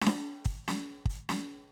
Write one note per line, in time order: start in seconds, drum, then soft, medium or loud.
0.02 snare loud
0.07 snare loud
0.27 snare soft
0.44 open hi-hat loud
0.44 kick medium
0.63 hi-hat pedal soft
0.68 snare loud
0.90 snare soft
1.06 open hi-hat loud
1.06 kick medium
1.29 snare loud
1.29 hi-hat pedal medium